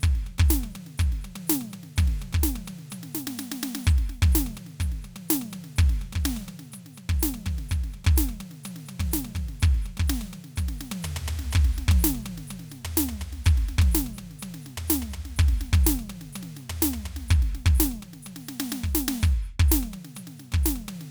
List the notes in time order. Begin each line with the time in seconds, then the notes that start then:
0.01 kick, hi-hat pedal, high tom
0.16 snare
0.23 hi-hat pedal
0.27 high tom
0.39 kick, high tom
0.49 snare, hi-hat pedal
0.64 high tom
0.72 hi-hat pedal
0.76 high tom
0.87 snare
0.98 kick, hi-hat pedal, high tom
1.13 snare
1.22 hi-hat pedal, high tom
1.36 high tom
1.48 snare, hi-hat pedal
1.61 high tom
1.70 hi-hat pedal, high tom
1.84 snare
1.97 kick, hi-hat pedal, high tom
2.08 snare
2.19 hi-hat pedal, high tom
2.33 kick, high tom
2.44 snare, hi-hat pedal
2.56 high tom
2.66 hi-hat pedal, high tom
2.79 snare
2.91 hi-hat pedal, high tom
3.04 snare
3.13 snare, hi-hat pedal
3.28 snare
3.38 snare, hi-hat pedal
3.52 snare
3.60 snare, hi-hat pedal
3.75 snare
3.85 closed hi-hat, kick, hi-hat pedal
3.99 snare
4.06 hi-hat pedal
4.10 snare
4.23 kick, high tom
4.33 snare, hi-hat pedal
4.47 high tom
4.54 hi-hat pedal, high tom
4.67 snare
4.80 kick, hi-hat pedal, high tom
4.92 snare
5.03 hi-hat pedal, high tom
5.17 high tom
5.29 snare, hi-hat pedal
5.42 kick, high tom
5.51 hi-hat pedal, high tom
5.65 snare
5.77 kick, hi-hat pedal, high tom
5.90 snare
5.98 hi-hat pedal, high tom
6.13 kick, high tom
6.25 snare, hi-hat pedal
6.37 high tom
6.49 high tom
6.60 snare
6.73 hi-hat pedal, high tom
6.87 snare
6.94 hi-hat pedal, high tom
7.10 kick, high tom
7.20 snare, hi-hat pedal
7.35 high tom
7.46 kick, high tom
7.59 snare
7.70 kick, hi-hat pedal, high tom
7.84 snare
7.91 hi-hat pedal, high tom
8.05 kick, high tom
8.17 snare, hi-hat pedal
8.29 high tom
8.39 hi-hat pedal, high tom
8.52 snare
8.64 hi-hat pedal, high tom
8.77 snare
8.86 hi-hat pedal, high tom
9.00 kick, high tom
9.12 snare, hi-hat pedal
9.25 high tom
9.34 kick, hi-hat pedal, high tom
9.49 snare
9.61 kick, hi-hat pedal, high tom
9.75 snare
9.82 hi-hat pedal, high tom
9.98 kick, high tom
10.08 snare, hi-hat pedal
10.22 high tom
10.32 hi-hat pedal, high tom
10.45 snare
10.56 kick, hi-hat pedal, high tom
10.69 snare
10.79 snare, hi-hat pedal
10.92 high tom
11.03 floor tom, hi-hat pedal
11.17 floor tom
11.25 floor tom, hi-hat pedal
11.40 snare
11.52 floor tom, hi-hat pedal
11.56 kick
11.65 snare
11.73 hi-hat pedal
11.79 snare
11.89 kick, high tom
12.00 hi-hat pedal
12.05 snare
12.15 high tom
12.23 hi-hat pedal, high tom
12.38 snare
12.48 hi-hat pedal, high tom
12.60 snare
12.70 snare, hi-hat pedal
12.85 floor tom
12.97 snare, hi-hat pedal
13.09 floor tom
13.20 floor tom, hi-hat pedal
13.33 snare
13.45 kick, floor tom, hi-hat pedal
13.58 snare
13.66 snare, hi-hat pedal
13.79 kick, high tom
13.92 snare, hi-hat pedal
14.07 high tom
14.14 hi-hat pedal
14.19 high tom
14.31 snare
14.40 hi-hat pedal, high tom
14.55 snare
14.62 hi-hat pedal
14.67 snare
14.78 floor tom
14.88 snare, hi-hat pedal
15.03 floor tom
15.10 floor tom, hi-hat pedal
15.26 snare
15.37 kick, floor tom, hi-hat pedal
15.49 snare
15.58 snare, hi-hat pedal
15.74 kick, high tom
15.84 snare, hi-hat pedal
16.00 high tom
16.07 hi-hat pedal, high tom
16.22 snare
16.33 hi-hat pedal, high tom
16.43 snare
16.56 snare, hi-hat pedal
16.70 floor tom
16.82 snare, hi-hat pedal
16.94 floor tom
17.00 kick, hi-hat pedal
17.06 floor tom
17.17 snare
17.29 kick, hi-hat pedal, high tom
17.43 snare
17.55 snare
17.66 kick, high tom
17.75 hi-hat pedal
17.81 snare
17.92 high tom
18.03 high tom
18.14 snare
18.23 hi-hat pedal, high tom
18.37 snare
18.45 hi-hat pedal
18.49 snare
18.61 snare
18.70 snare, hi-hat pedal
18.84 kick
18.92 snare, hi-hat pedal
19.09 snare
19.22 kick, hi-hat pedal
19.43 hi-hat pedal
19.60 kick
19.69 snare, hi-hat pedal
19.83 high tom
19.91 hi-hat pedal, high tom
20.05 snare
20.16 hi-hat pedal, high tom
20.28 snare
20.38 snare, hi-hat pedal
20.53 kick, high tom
20.64 snare, hi-hat pedal
20.76 high tom
20.85 hi-hat pedal, high tom
21.02 snare